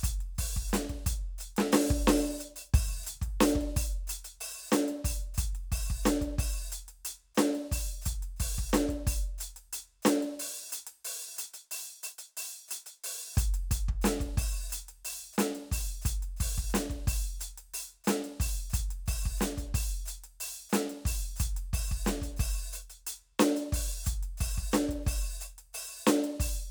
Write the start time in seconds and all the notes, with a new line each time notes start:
0.01 closed hi-hat, kick, hi-hat pedal
0.21 closed hi-hat
0.35 open hi-hat, kick, hi-hat pedal
0.57 kick
0.69 hi-hat pedal
0.73 closed hi-hat, snare
0.90 kick, closed hi-hat
1.06 open hi-hat, kick
1.38 closed hi-hat, hi-hat pedal
1.57 snare, closed hi-hat
1.72 open hi-hat, snare
1.87 kick
1.90 kick
2.08 open hi-hat, snare
2.38 closed hi-hat, hi-hat pedal
2.56 open hi-hat, hi-hat pedal
2.74 open hi-hat, kick
3.04 closed hi-hat, hi-hat pedal
3.22 kick, closed hi-hat
3.41 open hi-hat, snare
3.49 hi-hat pedal
3.55 kick
3.61 closed hi-hat
3.77 open hi-hat, kick
4.07 closed hi-hat, hi-hat pedal
4.25 closed hi-hat
4.41 open hi-hat
4.68 snare, hi-hat pedal
4.73 closed hi-hat
4.88 closed hi-hat
5.05 open hi-hat, kick
5.34 closed hi-hat, kick, hi-hat pedal
5.55 closed hi-hat
5.72 open hi-hat, kick
5.90 kick
6.03 closed hi-hat, snare, hi-hat pedal
6.21 kick, closed hi-hat
6.39 open hi-hat, kick
6.70 closed hi-hat, hi-hat pedal
6.88 closed hi-hat
7.05 open hi-hat
7.35 closed hi-hat, snare, hi-hat pedal
7.55 closed hi-hat
7.72 open hi-hat, kick
8.02 closed hi-hat, hi-hat pedal
8.06 kick
8.23 closed hi-hat
8.37 open hi-hat, kick, hi-hat pedal
8.58 kick
8.70 snare, hi-hat pedal
8.74 closed hi-hat
8.89 kick, closed hi-hat
9.07 open hi-hat, kick
9.38 closed hi-hat, hi-hat pedal
9.56 closed hi-hat
9.73 closed hi-hat
10.03 closed hi-hat, snare, hi-hat pedal
10.23 closed hi-hat
10.40 open hi-hat
10.70 closed hi-hat, hi-hat pedal
10.87 closed hi-hat
11.05 open hi-hat
11.36 closed hi-hat, hi-hat pedal
11.54 closed hi-hat
11.71 open hi-hat
12.03 open hi-hat, hi-hat pedal
12.18 closed hi-hat
12.37 open hi-hat
12.68 closed hi-hat, hi-hat pedal
12.86 closed hi-hat
13.04 open hi-hat
13.35 closed hi-hat, kick, hi-hat pedal
13.54 closed hi-hat
13.71 open hi-hat, kick
13.89 kick
14.02 closed hi-hat, snare, hi-hat pedal
14.20 kick, closed hi-hat
14.38 open hi-hat, kick
14.70 closed hi-hat, hi-hat pedal
14.89 closed hi-hat
15.05 open hi-hat
15.33 hi-hat pedal
15.38 closed hi-hat, snare
15.55 closed hi-hat
15.72 open hi-hat, kick
16.02 closed hi-hat, kick, hi-hat pedal
16.23 closed hi-hat
16.37 open hi-hat, kick, hi-hat pedal
16.58 kick
16.70 hi-hat pedal
16.74 closed hi-hat, snare
16.90 kick, closed hi-hat
17.06 open hi-hat, kick, hi-hat pedal
17.40 closed hi-hat, hi-hat pedal
17.58 closed hi-hat
17.74 open hi-hat
18.04 closed hi-hat, snare, hi-hat pedal
18.24 closed hi-hat
18.40 open hi-hat, kick
18.70 closed hi-hat, kick, hi-hat pedal
18.91 closed hi-hat
19.06 open hi-hat, kick, hi-hat pedal
19.26 kick
19.38 snare, hi-hat pedal
19.42 closed hi-hat
19.58 closed hi-hat, kick
19.74 open hi-hat, kick
20.06 closed hi-hat, hi-hat pedal
20.24 closed hi-hat
20.40 open hi-hat
20.70 closed hi-hat, snare, hi-hat pedal
20.90 closed hi-hat
21.05 open hi-hat, kick, hi-hat pedal
21.36 closed hi-hat, kick, hi-hat pedal
21.57 closed hi-hat
21.73 open hi-hat, kick
21.91 kick
22.05 closed hi-hat, snare, hi-hat pedal
22.22 closed hi-hat, kick
22.37 open hi-hat, kick, hi-hat pedal
22.73 open hi-hat, hi-hat pedal
22.90 closed hi-hat
23.07 closed hi-hat
23.39 closed hi-hat, snare, hi-hat pedal
23.56 closed hi-hat
23.73 open hi-hat, kick
24.04 closed hi-hat, kick, hi-hat pedal
24.23 closed hi-hat
24.38 open hi-hat, kick, hi-hat pedal
24.58 kick
24.72 closed hi-hat, snare, hi-hat pedal
24.89 kick, closed hi-hat
25.02 hi-hat pedal
25.07 open hi-hat, kick
25.41 open hi-hat, hi-hat pedal
25.58 closed hi-hat
25.73 open hi-hat, hi-hat pedal
26.07 closed hi-hat, snare, hi-hat pedal
26.24 closed hi-hat
26.40 open hi-hat, kick